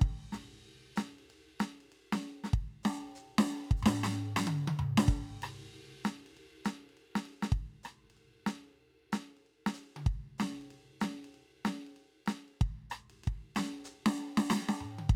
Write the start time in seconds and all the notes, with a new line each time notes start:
0.02 kick, crash
0.33 snare, hi-hat pedal, ride
0.64 ride
0.97 snare, hi-hat pedal, ride
1.19 ride
1.31 ride
1.60 snare, hi-hat pedal, ride
1.81 ride
1.93 ride
2.13 snare, hi-hat pedal
2.24 ride
2.44 snare
2.54 kick, ride
2.84 snare, hi-hat pedal, ride
3.16 hi-hat pedal, ride
3.39 snare, hi-hat pedal
3.53 ride
3.72 kick
3.78 hi-hat pedal
3.83 snare, mid tom
4.04 snare
4.12 snare
4.37 snare
4.48 high tom
4.68 high tom
4.80 mid tom
4.98 snare
5.09 kick, crash
5.43 cross-stick, ride
5.75 ride
6.05 snare, hi-hat pedal, ride
6.27 ride
6.38 ride
6.65 snare, hi-hat pedal
6.90 ride
6.98 ride
7.16 snare
7.26 ride
7.43 snare
7.53 kick, ride
7.84 cross-stick, hi-hat pedal
8.11 ride
8.18 ride
8.47 snare, hi-hat pedal, ride
9.13 snare, hi-hat pedal, ride
9.38 ride
9.47 ride
9.67 snare
9.74 hi-hat pedal
9.79 ride
9.97 high tom
10.07 kick, ride
10.39 snare, hi-hat pedal, ride
10.62 ride
10.71 ride
11.01 snare, hi-hat pedal, ride
11.25 ride
11.35 ride
11.65 snare, hi-hat pedal, ride
11.87 ride
11.97 ride
12.27 snare, hi-hat pedal, ride
12.49 ride
12.62 kick
12.91 cross-stick, hi-hat pedal
13.11 ride
13.24 kick, ride
13.56 snare, ride
13.61 hi-hat pedal
13.74 ride
13.85 hi-hat pedal, ride
14.07 snare
14.11 hi-hat pedal
14.19 ride
14.38 snare
14.43 hi-hat pedal
14.51 snare
14.69 snare
14.74 hi-hat pedal
14.81 mid tom
14.99 high tom
15.09 kick, crash